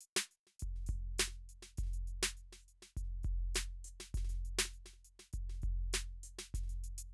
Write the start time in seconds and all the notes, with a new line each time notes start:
0.01 closed hi-hat
0.16 snare
0.31 closed hi-hat
0.47 snare
0.59 closed hi-hat, kick
0.76 snare
0.82 snare
0.86 open hi-hat, kick
0.95 kick
1.18 closed hi-hat, snare
1.28 snare
1.49 closed hi-hat
1.62 snare
1.77 closed hi-hat, kick, snare
1.83 snare
1.87 kick, snare
1.91 closed hi-hat, snare
2.07 closed hi-hat
2.23 snare
2.37 closed hi-hat
2.52 snare
2.60 hi-hat pedal
2.68 closed hi-hat
2.82 snare
2.97 closed hi-hat, kick
3.04 snare
3.23 kick, closed hi-hat
3.33 kick
3.55 closed hi-hat, snare
3.84 hi-hat pedal
4.00 snare
4.14 closed hi-hat, kick, snare
4.23 kick, snare
4.29 closed hi-hat, snare
4.34 snare
4.45 closed hi-hat
4.59 snare
4.65 snare
4.74 closed hi-hat
4.86 snare
4.93 snare
5.04 closed hi-hat
5.19 snare
5.33 closed hi-hat, kick
5.49 snare
5.54 snare
5.62 closed hi-hat, kick
5.93 closed hi-hat, snare
6.23 closed hi-hat, hi-hat pedal
6.39 snare
6.54 closed hi-hat, kick, snare
6.62 kick, snare
6.67 closed hi-hat, snare
6.70 snare
6.73 snare
6.84 closed hi-hat
6.98 closed hi-hat